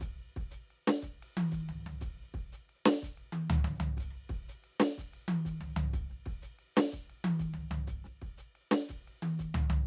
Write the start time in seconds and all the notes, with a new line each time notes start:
0.01 kick, hi-hat pedal, ride
0.37 kick, ride
0.52 hi-hat pedal
0.71 ride
0.88 snare, ride
1.02 kick, hi-hat pedal
1.23 ride
1.37 high tom
1.52 kick, hi-hat pedal, ride
1.69 floor tom
1.87 floor tom, ride
2.01 kick, hi-hat pedal, ride
2.23 hi-hat pedal
2.35 kick, ride
2.53 hi-hat pedal
2.70 ride
2.76 hi-hat pedal
2.86 snare, ride
3.03 kick, hi-hat pedal
3.18 ride
3.33 high tom
3.50 floor tom, hi-hat pedal
3.65 floor tom
3.76 hi-hat pedal
3.81 floor tom
3.98 kick, hi-hat pedal, ride
4.11 cross-stick
4.30 kick, ride
4.49 hi-hat pedal
4.64 ride
4.72 hi-hat pedal
4.80 snare, ride
4.98 kick, hi-hat pedal
5.14 ride
5.21 hi-hat pedal
5.29 high tom
5.46 kick, hi-hat pedal, ride
5.61 floor tom
5.68 hi-hat pedal
5.77 floor tom
5.94 kick, hi-hat pedal, ride
6.11 snare
6.26 kick, ride
6.43 hi-hat pedal
6.59 ride
6.77 snare, ride
6.92 kick, hi-hat pedal
7.10 ride
7.25 high tom
7.40 kick, hi-hat pedal, ride
7.54 floor tom
7.72 floor tom
7.88 kick, hi-hat pedal, ride
8.05 snare
8.22 kick, ride
8.38 hi-hat pedal
8.56 ride
8.61 hi-hat pedal
8.72 snare, ride
8.89 kick, hi-hat pedal
9.08 hi-hat pedal, ride
9.23 high tom
9.40 kick, hi-hat pedal
9.55 floor tom
9.62 hi-hat pedal
9.70 floor tom